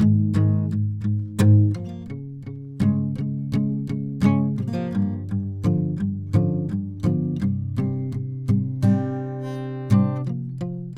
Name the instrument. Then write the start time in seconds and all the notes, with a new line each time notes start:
acoustic guitar
0.00 G#2 D#3 G#3
0.35 G#2 D#3 G#3
0.73 G#2
1.06 G#2
1.40 G#2 D#3 G#3
1.73 G2 C3 F3 A#3
1.94 A#3
2.11 C#3
2.48 C#3
2.81 G2 C#3 G#3 C#4
3.17 C#3 G#3
3.54 C#3 G#3
3.89 C#3 G#3
4.22 G2 C#3 G#3
4.27 C#4
4.59 C3
4.69 A#3
4.75 C3 F3
4.96 G2
5.32 G2
5.65 D3 F3 B3
5.99 G2 D3
6.35 D3 F3 C#4
6.70 G2 D3
7.05 D3 F3 B3
7.38 C3 A#3
7.43 G2
7.78 C3 G3
8.13 C3
8.50 C3 G3
8.84 G3 C4
9.92 G3 C4 D4
10.17 B3
10.28 F3
10.62 F3